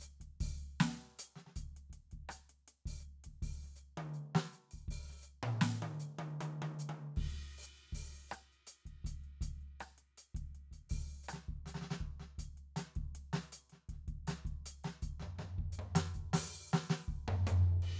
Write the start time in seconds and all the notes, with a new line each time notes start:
0.01 closed hi-hat, hi-hat pedal
0.20 kick, closed hi-hat
0.40 open hi-hat, kick
0.80 snare, hi-hat pedal
1.01 closed hi-hat
1.19 closed hi-hat
1.36 snare
1.40 closed hi-hat
1.46 snare
1.56 closed hi-hat, kick
1.76 closed hi-hat
1.90 kick, closed hi-hat
2.11 kick, closed hi-hat
2.29 closed hi-hat, cross-stick
2.49 closed hi-hat
2.68 closed hi-hat
2.85 open hi-hat, kick
3.00 hi-hat pedal
3.24 kick, closed hi-hat
3.42 open hi-hat, kick
3.63 snare
3.76 hi-hat pedal
3.97 high tom
4.13 hi-hat pedal
4.35 snare
4.52 snare, hi-hat pedal
4.71 kick, open hi-hat
4.88 open hi-hat, kick
5.09 snare
5.22 hi-hat pedal
5.43 mid tom
5.61 snare, hi-hat pedal
5.82 high tom
6.00 hi-hat pedal
6.19 high tom
6.41 hi-hat pedal, high tom
6.62 high tom
6.79 hi-hat pedal
6.89 high tom
7.16 kick, crash
7.58 open hi-hat
7.62 hi-hat pedal
7.77 closed hi-hat
7.93 open hi-hat, kick
8.28 cross-stick, hi-hat pedal
8.33 closed hi-hat
8.52 closed hi-hat
8.67 closed hi-hat
8.85 kick, closed hi-hat
9.04 closed hi-hat, kick
9.24 closed hi-hat
9.41 closed hi-hat, kick
9.61 closed hi-hat
9.80 cross-stick, closed hi-hat
9.98 closed hi-hat
10.18 closed hi-hat
10.35 kick, closed hi-hat
10.55 closed hi-hat
10.71 closed hi-hat, kick
10.89 open hi-hat, kick
11.23 hi-hat pedal
11.28 closed hi-hat, cross-stick
11.33 snare
11.48 kick
11.66 snare, hi-hat pedal
11.74 snare
11.81 snare
11.90 snare
12.00 kick
12.20 snare
12.38 closed hi-hat, kick
12.57 closed hi-hat
12.76 closed hi-hat, snare
12.95 kick, closed hi-hat
13.15 closed hi-hat
13.33 snare, closed hi-hat
13.52 closed hi-hat
13.70 snare, closed hi-hat
13.89 kick, snare, closed hi-hat
14.08 kick, closed hi-hat
14.27 closed hi-hat, snare
14.45 kick, closed hi-hat
14.66 closed hi-hat
14.84 snare, closed hi-hat
15.02 closed hi-hat, kick
15.20 snare, floor tom
15.39 snare, floor tom
15.58 kick
15.72 hi-hat pedal
15.79 floor tom
15.95 snare, closed hi-hat
16.14 kick, hi-hat pedal
16.33 open hi-hat, snare
16.73 snare
16.90 snare
17.08 kick
17.28 floor tom
17.47 floor tom, hi-hat pedal
17.78 kick, ride